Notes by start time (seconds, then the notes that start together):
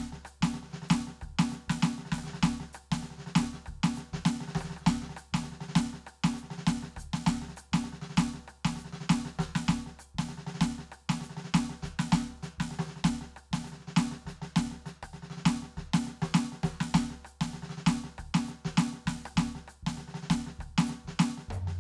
0.01 kick
0.14 snare
0.26 cross-stick, hi-hat pedal
0.43 kick, snare
0.55 snare
0.64 snare
0.70 snare
0.74 snare
0.83 snare
0.90 kick, snare, hi-hat pedal
1.09 snare
1.23 kick, cross-stick
1.32 kick
1.40 snare
1.52 snare, hi-hat pedal
1.70 kick, snare
1.84 snare
1.99 snare
2.07 snare
2.13 kick, snare, hi-hat pedal
2.20 cross-stick
2.25 snare
2.28 snare
2.35 snare
2.44 kick, snare
2.50 kick
2.61 snare
2.74 cross-stick, hi-hat pedal
2.93 kick, snare
3.04 snare
3.12 snare
3.19 snare
3.20 snare
3.28 snare
3.37 kick, snare, hi-hat pedal
3.42 kick, snare
3.55 snare
3.67 kick, cross-stick
3.76 kick
3.85 snare
3.97 snare, hi-hat pedal
4.14 kick, snare
4.27 snare
4.42 snare
4.49 snare
4.56 kick, snare
4.60 cross-stick, hi-hat pedal
4.66 snare
4.71 snare
4.78 cross-stick
4.82 snare
4.88 kick, snare
4.94 kick
5.04 snare
5.11 snare
5.18 cross-stick, hi-hat pedal
5.34 kick, snare
5.45 snare
5.53 snare
5.62 snare
5.70 snare
5.77 kick, snare, hi-hat pedal
5.81 cross-stick
5.94 snare
6.08 cross-stick
6.25 kick, snare
6.35 snare, hi-hat pedal
6.44 snare
6.52 snare
6.59 snare
6.68 kick, snare
6.84 snare
6.98 kick, cross-stick, hi-hat pedal
7.07 kick
7.15 snare
7.28 kick, snare
7.38 kick
7.43 snare
7.50 snare
7.58 cross-stick, hi-hat pedal
7.74 kick, snare
7.85 snare
7.94 snare
8.03 snare
8.11 snare
8.18 kick, snare, hi-hat pedal
8.35 snare
8.49 cross-stick
8.66 kick, snare
8.77 snare, hi-hat pedal
8.86 snare
8.94 snare
9.02 snare
9.11 kick, snare
9.27 snare
9.40 kick, snare, hi-hat pedal
9.57 snare
9.70 kick, snare
9.76 kick
9.88 snare
10.00 cross-stick, hi-hat pedal
10.16 kick, snare
10.30 snare
10.39 snare
10.48 snare
10.56 snare
10.62 kick, snare, hi-hat pedal
10.80 snare
10.93 cross-stick
11.10 kick, snare
11.22 snare, hi-hat pedal
11.31 snare
11.38 snare
11.46 snare
11.55 kick, snare
11.71 snare
11.84 kick, snare, hi-hat pedal
12.00 snare
12.14 kick, snare
12.20 kick
12.23 kick
12.31 snare
12.44 snare, hi-hat pedal
12.60 kick, snare
12.72 snare
12.80 snare
12.88 snare
12.90 snare
12.97 snare
13.05 kick, snare, hi-hat pedal
13.11 kick
13.22 snare
13.38 cross-stick
13.53 kick, snare
13.66 snare, hi-hat pedal
13.73 snare
13.81 snare
13.89 snare
13.98 kick, snare
14.13 snare
14.27 kick, snare, hi-hat pedal
14.43 snare
14.57 kick, snare
14.73 snare
14.87 snare, hi-hat pedal
15.04 kick, cross-stick
15.15 snare
15.24 snare
15.31 snare
15.38 snare
15.46 kick, snare, hi-hat pedal
15.64 snare
15.79 kick, snare
15.87 kick
15.95 snare
16.05 snare, hi-hat pedal
16.23 kick, snare
16.36 snare
16.54 snare
16.65 kick, snare, hi-hat pedal
16.82 snare
16.96 kick, snare
17.02 kick
17.12 snare
17.26 cross-stick, hi-hat pedal
17.42 kick, snare
17.55 snare
17.64 snare
17.71 snare
17.79 snare
17.88 kick, snare, hi-hat pedal
18.05 snare
18.19 kick, cross-stick
18.28 kick
18.36 snare
18.48 snare, hi-hat pedal
18.66 kick, snare
18.79 snare
18.94 snare
19.08 kick, snare, hi-hat pedal
19.27 cross-stick
19.38 kick, snare
19.44 kick
19.47 kick
19.56 snare
19.69 cross-stick, hi-hat pedal
19.84 kick, snare
19.99 snare
20.09 snare
20.16 snare
20.24 snare
20.31 kick, snare, hi-hat pedal
20.37 kick
20.48 snare
20.61 kick, cross-stick
20.67 kick
20.69 kick
20.79 snare
20.88 snare, hi-hat pedal
21.06 kick, snare
21.21 snare
21.39 snare
21.50 kick, floor tom, hi-hat pedal
21.69 snare